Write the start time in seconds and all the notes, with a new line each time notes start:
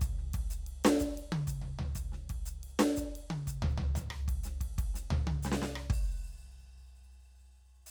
0.01 kick, hi-hat pedal, ride
0.18 snare
0.34 kick, ride
0.50 hi-hat pedal
0.67 ride
0.84 snare, ride
0.99 kick, hi-hat pedal
1.18 ride
1.32 high tom
1.47 kick, hi-hat pedal, ride
1.62 floor tom
1.79 floor tom
1.95 kick, hi-hat pedal, ride
2.12 snare
2.30 kick, ride
2.46 hi-hat pedal
2.63 ride
2.68 hi-hat pedal
2.79 snare, ride
2.96 kick, hi-hat pedal
3.15 hi-hat pedal, ride
3.30 high tom
3.47 kick, hi-hat pedal
3.62 floor tom
3.69 hi-hat pedal
3.78 floor tom
3.95 floor tom, hi-hat pedal
4.10 cross-stick
4.28 kick, ride
4.43 snare, hi-hat pedal
4.61 kick, ride
4.78 kick, ride
4.94 snare, hi-hat pedal
5.11 floor tom
5.27 high tom
5.43 snare, hi-hat pedal
5.52 snare
5.62 snare
5.76 cross-stick
5.90 open hi-hat, kick
7.86 hi-hat pedal